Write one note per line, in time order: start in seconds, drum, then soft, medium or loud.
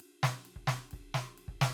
0.00 ride medium
0.23 snare loud
0.23 ride medium
0.45 ride medium
0.56 kick soft
0.67 snare loud
0.67 ride medium
0.91 kick soft
0.91 ride medium
1.14 snare medium
1.14 ride medium
1.38 ride medium
1.48 kick soft
1.61 snare loud
1.61 ride medium